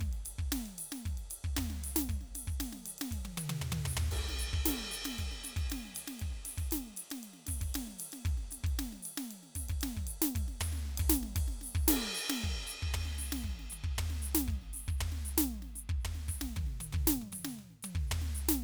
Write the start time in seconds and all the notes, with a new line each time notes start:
0.01 kick, ride
0.13 ride
0.26 hi-hat pedal, ride
0.39 kick
0.50 snare, hi-hat pedal, ride
0.66 ride
0.78 hi-hat pedal, ride
0.92 snare
1.06 kick, ride
1.18 ride
1.31 hi-hat pedal, ride
1.45 kick
1.57 snare, floor tom
1.70 snare
1.84 hi-hat pedal, ride
1.96 snare
2.09 kick, ride
2.21 snare
2.35 snare, hi-hat pedal, ride
2.48 kick
2.60 snare, hi-hat pedal, ride
2.73 snare
2.86 hi-hat pedal, ride
2.99 snare, ride
3.11 kick, hi-hat pedal, ride
3.25 high tom
3.38 hi-hat pedal, mid tom
3.50 mid tom
3.62 floor tom, hi-hat pedal
3.72 mid tom
3.86 floor tom, hi-hat pedal
3.97 floor tom
4.05 kick
4.12 kick, hi-hat pedal, ride
4.29 snare
4.39 hi-hat pedal, ride
4.54 kick
4.64 snare, hi-hat pedal, ride
4.79 snare
4.92 hi-hat pedal, ride
5.05 snare, ride
5.17 kick, hi-hat pedal, ride
5.32 snare
5.44 snare, hi-hat pedal, ride
5.57 kick, ride
5.69 snare, hi-hat pedal, ride
5.85 snare
5.93 kick, hi-hat pedal, ride
6.08 snare, ride
6.19 kick, hi-hat pedal, ride
6.31 snare
6.45 snare, hi-hat pedal, ride
6.58 kick, ride
6.72 snare, ride
6.87 snare
6.97 hi-hat pedal, ride
7.11 snare, ride
7.23 ride
7.34 snare
7.47 kick, snare, hi-hat pedal, ride
7.62 kick, ride
7.72 snare, hi-hat pedal, ride
7.87 snare
7.99 hi-hat pedal, ride
8.13 snare, ride
8.25 kick, ride
8.38 snare
8.51 snare, hi-hat pedal, ride
8.64 kick, ride
8.79 snare, ride
8.93 snare
9.03 hi-hat pedal, ride
9.18 snare, ride
9.28 hi-hat pedal, ride
9.43 snare
9.55 kick, snare, hi-hat pedal, ride
9.69 kick, ride
9.80 snare, hi-hat pedal, ride
9.97 kick
10.07 hi-hat pedal, ride
10.22 snare
10.36 kick, ride
10.48 snare
10.61 floor tom, hi-hat pedal
10.73 snare
10.86 snare
10.98 kick, ride
11.10 snare, hi-hat pedal
11.23 snare
11.36 kick, hi-hat pedal, ride
11.48 snare
11.62 snare, hi-hat pedal
11.75 kick
11.88 snare, ride
12.15 hi-hat pedal
12.30 snare
12.40 hi-hat pedal
12.44 kick
12.59 snare
12.67 hi-hat pedal
12.73 snare
12.83 kick
12.92 floor tom, hi-hat pedal
13.05 snare
13.19 snare, hi-hat pedal
13.33 snare
13.44 kick
13.59 snare
13.70 hi-hat pedal, mid tom
13.84 kick
13.95 floor tom, hi-hat pedal
14.10 snare
14.23 hi-hat pedal, ride
14.35 snare
14.47 kick, hi-hat pedal, ride
14.62 snare
14.74 snare, hi-hat pedal
14.88 kick
14.98 floor tom, hi-hat pedal
15.12 snare
15.25 hi-hat pedal
15.38 snare
15.63 snare
15.76 snare, hi-hat pedal
15.90 kick
16.01 hi-hat pedal
16.05 floor tom
16.15 snare
16.29 kick, hi-hat pedal
16.42 snare
16.57 kick, mid tom
16.67 snare
16.81 hi-hat pedal, mid tom
16.93 kick, mid tom
17.05 snare, hi-hat pedal
17.22 high tom
17.32 hi-hat pedal, high tom
17.45 snare
17.59 kick, high tom
17.71 snare
17.83 hi-hat pedal, high tom
17.95 kick
18.08 hi-hat pedal
18.12 floor tom
18.22 snare
18.35 kick, hi-hat pedal
18.49 snare